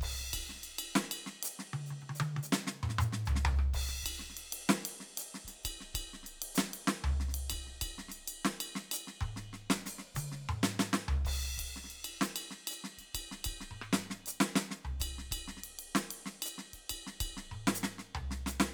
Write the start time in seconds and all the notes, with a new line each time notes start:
0.01 kick, hi-hat pedal, crash
0.20 snare
0.33 kick, ride bell
0.39 kick
0.49 snare
0.55 snare
0.59 snare
0.64 ride bell
0.79 ride bell
0.96 snare
1.03 snare
1.11 ride bell
1.26 snare
1.43 hi-hat pedal, ride
1.59 snare
1.73 high tom
1.86 hi-hat pedal
1.91 high tom
2.01 high tom, crash
2.10 open hi-hat, high tom
2.15 hi-hat pedal
2.20 high tom
2.37 high tom
2.43 hi-hat pedal
2.52 snare
2.67 snare
2.83 mid tom
2.89 snare
2.99 hi-hat pedal, mid tom
3.13 snare
3.26 floor tom, hi-hat pedal
3.36 snare
3.45 floor tom
3.55 hi-hat pedal
3.59 cross-stick
3.74 kick, hi-hat pedal, crash
3.89 cross-stick
4.04 kick, ride bell
4.19 snare
4.30 snare
4.37 ride
4.53 ride
4.69 snare
4.85 ride
5.00 snare
5.18 hi-hat pedal, ride
5.34 snare
5.45 kick, snare, ride bell
5.63 kick, hi-hat pedal, ride bell
5.81 snare
5.95 kick, ride bell
6.01 kick
6.13 snare
6.23 snare, ride bell
6.42 ride
6.55 snare, hi-hat pedal
6.74 ride
6.88 snare
7.04 floor tom
7.20 snare
7.29 snare, hi-hat pedal
7.34 ride
7.50 kick, snare, ride bell
7.67 snare
7.82 kick, ride bell
7.88 kick
7.98 snare
8.09 snare, ride bell
8.28 ride bell
8.45 snare
8.61 ride bell
8.75 snare
8.92 hi-hat pedal, ride bell
9.07 snare
9.21 kick, mid tom
9.28 kick
9.32 kick
9.36 snare
9.53 snare
9.70 snare
9.86 snare, hi-hat pedal
9.99 snare
10.15 kick, hi-hat pedal, open hi-hat, high tom
10.32 snare
10.49 mid tom
10.63 snare
10.79 snare
10.93 snare
11.08 floor tom
11.25 kick, hi-hat pedal, crash
11.45 cross-stick
11.58 kick, ride
11.76 snare
11.84 snare
11.90 snare, ride bell
12.05 ride bell
12.21 snare, hi-hat pedal
12.36 ride bell
12.51 snare
12.67 hi-hat pedal, ride bell
12.84 snare
12.98 kick, snare, ride bell
13.15 kick, hi-hat pedal, ride bell
13.32 snare
13.45 kick, ride bell
13.52 kick
13.61 snare
13.71 mid tom
13.82 cross-stick
13.93 snare, hi-hat pedal
14.10 snare
14.26 hi-hat pedal, ride bell
14.40 snare
14.56 snare
14.71 snare
14.82 snare, floor tom
15.00 kick, hi-hat pedal, ride bell
15.18 snare
15.31 kick, ride bell
15.48 snare
15.57 snare
15.64 ride
15.79 ride
15.95 snare, hi-hat pedal
16.11 ride
16.26 snare
16.42 hi-hat pedal, ride bell
16.58 snare
16.73 kick, snare, ride
16.90 kick, ride bell
17.07 snare
17.21 kick, ride bell
17.27 kick
17.37 snare
17.52 mid tom
17.67 snare
17.75 hi-hat pedal
17.83 snare
17.99 snare
18.15 floor tom
18.31 snare
18.46 snare, hi-hat pedal
18.60 snare